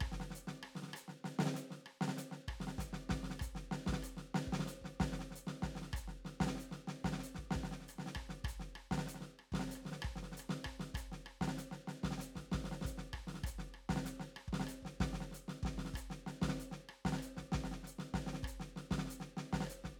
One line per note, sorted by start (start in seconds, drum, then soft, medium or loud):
0.01 kick soft
0.01 cross-stick medium
0.12 snare soft
0.20 snare soft
0.31 snare soft
0.35 hi-hat pedal medium
0.48 snare soft
0.63 cross-stick medium
0.76 snare soft
0.83 snare soft
0.88 snare soft
0.94 cross-stick medium
0.94 hi-hat pedal medium
1.08 snare soft
1.25 snare soft
1.39 snare medium
1.46 snare medium
1.55 snare soft
1.55 hi-hat pedal medium
1.71 snare soft
1.86 cross-stick soft
2.01 snare medium
2.08 snare medium
2.17 snare soft
2.17 hi-hat pedal medium
2.32 snare soft
2.48 kick soft
2.48 cross-stick medium
2.61 snare soft
2.67 snare soft
2.79 kick soft
2.79 snare soft
2.79 hi-hat pedal medium
2.93 snare soft
3.10 kick soft
3.10 snare medium
3.23 snare soft
3.30 snare soft
3.40 kick soft
3.40 cross-stick medium
3.40 hi-hat pedal medium
3.55 snare soft
3.72 snare medium
3.87 kick soft
3.87 snare medium
3.93 snare medium
4.03 cross-stick soft
4.03 hi-hat pedal medium
4.17 snare soft
4.35 snare medium
4.47 kick soft
4.53 snare medium
4.60 snare medium
4.67 snare soft
4.67 hi-hat pedal medium
4.82 kick soft
4.82 snare soft
5.00 kick soft
5.00 snare medium
5.12 snare soft
5.20 snare soft
5.31 snare soft
5.36 hi-hat pedal medium
5.47 snare soft
5.63 kick soft
5.63 snare medium
5.76 snare soft
5.82 snare soft
5.89 snare soft
5.93 kick soft
5.93 cross-stick medium
5.93 hi-hat pedal medium
6.08 snare soft
6.25 snare soft
6.41 kick soft
6.41 snare medium
6.47 snare medium
6.56 snare soft
6.60 hi-hat pedal soft
6.72 snare soft
6.88 snare soft
7.05 kick soft
7.05 snare medium
7.13 snare soft
7.18 snare soft
7.24 hi-hat pedal medium
7.35 kick soft
7.35 snare soft
7.51 snare medium
7.56 kick soft
7.64 snare soft
7.72 snare soft
7.79 snare soft
7.81 snare soft
7.89 cross-stick soft
7.89 hi-hat pedal soft
7.96 snare soft
7.99 snare soft
8.07 snare soft
8.15 kick soft
8.15 cross-stick medium
8.30 snare soft
8.45 kick soft
8.45 cross-stick medium
8.45 hi-hat pedal medium
8.52 kick soft
8.60 snare soft
8.76 cross-stick medium
8.91 kick soft
8.91 snare medium
8.98 snare medium
9.07 snare soft
9.07 hi-hat pedal medium
9.15 snare soft
9.21 snare soft
9.39 cross-stick soft
9.52 kick soft
9.52 snare medium
9.60 snare medium
9.67 snare soft
9.71 hi-hat pedal medium
9.76 cross-stick soft
9.82 snare soft
9.86 snare soft
9.92 snare soft
10.02 kick soft
10.02 cross-stick medium
10.11 kick soft
10.16 snare soft
10.23 snare soft
10.32 snare soft
10.37 cross-stick soft
10.37 hi-hat pedal medium
10.50 snare medium
10.65 kick soft
10.65 cross-stick medium
10.80 snare soft
10.95 kick soft
10.95 cross-stick medium
10.95 hi-hat pedal medium
11.12 snare soft
11.26 cross-stick soft
11.41 kick soft
11.41 snare medium
11.48 snare medium
11.57 snare soft
11.57 hi-hat pedal medium
11.72 snare soft
11.88 snare soft
12.04 kick soft
12.04 snare medium
12.11 snare soft
12.18 snare soft
12.18 hi-hat pedal medium
12.36 kick soft
12.36 snare soft
12.52 kick soft
12.52 snare medium
12.64 snare soft
12.72 snare soft
12.82 kick soft
12.82 snare soft
12.87 hi-hat pedal medium
12.98 snare soft
13.14 kick soft
13.14 cross-stick medium
13.27 snare soft
13.35 snare soft
13.44 kick soft
13.44 cross-stick medium
13.44 hi-hat pedal medium
13.52 kick soft
13.59 snare soft
13.74 cross-stick soft
13.90 kick soft
13.90 snare medium
13.96 snare medium
14.05 snare soft
14.05 hi-hat pedal medium
14.20 snare soft
14.37 cross-stick medium
14.48 kick soft
14.53 snare medium
14.60 snare medium
14.67 cross-stick soft
14.67 hi-hat pedal medium
14.83 kick soft
14.83 snare soft
15.01 kick soft
15.01 snare medium
15.13 snare soft
15.21 snare soft
15.32 snare soft
15.32 hi-hat pedal medium
15.48 snare soft
15.63 kick soft
15.63 snare soft
15.71 kick soft
15.78 snare soft
15.85 snare soft
15.94 kick soft
15.94 cross-stick medium
15.94 hi-hat pedal medium
16.10 snare soft
16.27 snare soft
16.42 kick soft
16.42 snare medium
16.49 snare soft
16.57 snare soft
16.57 hi-hat pedal soft
16.72 snare soft
16.89 cross-stick soft
17.05 kick soft
17.05 snare medium
17.13 snare medium
17.19 cross-stick soft
17.19 hi-hat pedal medium
17.37 kick soft
17.37 snare soft
17.52 kick soft
17.52 snare medium
17.64 snare soft
17.72 snare soft
17.83 snare soft
17.88 hi-hat pedal medium
17.99 snare soft
18.14 kick soft
18.14 snare medium
18.27 snare soft
18.34 snare soft
18.43 kick soft
18.43 cross-stick medium
18.48 hi-hat pedal medium
18.60 snare soft
18.76 snare soft
18.91 kick soft
18.91 snare medium
18.99 snare soft
19.06 snare soft
19.11 hi-hat pedal medium
19.20 snare soft
19.37 snare soft
19.53 kick soft
19.53 snare medium
19.61 snare medium
19.67 cross-stick soft
19.67 hi-hat pedal medium
19.84 kick soft
19.84 snare soft